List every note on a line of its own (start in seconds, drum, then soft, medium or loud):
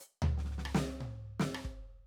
0.00 hi-hat pedal medium
0.22 floor tom loud
0.38 snare soft
0.45 snare soft
0.51 snare soft
0.58 snare soft
0.65 cross-stick medium
0.75 snare loud
1.00 closed hi-hat soft
1.00 high tom medium
1.40 snare medium
1.55 cross-stick medium
1.64 kick soft